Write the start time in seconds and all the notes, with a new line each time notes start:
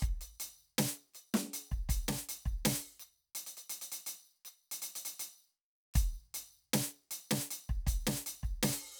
0.02 kick, hi-hat pedal
0.21 closed hi-hat
0.40 closed hi-hat
0.78 closed hi-hat, snare
0.97 closed hi-hat
1.14 closed hi-hat, hi-hat pedal
1.34 snare
1.53 closed hi-hat
1.71 kick, closed hi-hat
1.89 closed hi-hat, kick
2.08 snare
2.29 closed hi-hat
2.45 kick, closed hi-hat
2.65 snare, percussion
3.00 hi-hat pedal
3.35 closed hi-hat
3.46 closed hi-hat
3.57 closed hi-hat
3.70 closed hi-hat
3.81 closed hi-hat
3.92 closed hi-hat
4.06 closed hi-hat
4.45 hi-hat pedal
4.71 closed hi-hat
4.82 closed hi-hat
4.95 closed hi-hat
5.05 closed hi-hat
5.19 percussion
5.94 closed hi-hat, kick, hi-hat pedal
6.14 closed hi-hat
6.34 closed hi-hat
6.73 closed hi-hat, snare
6.94 closed hi-hat
7.11 closed hi-hat
7.31 snare
7.50 closed hi-hat
7.69 kick, closed hi-hat
7.87 closed hi-hat, kick
8.07 snare
8.26 closed hi-hat
8.43 kick, closed hi-hat
8.63 snare, percussion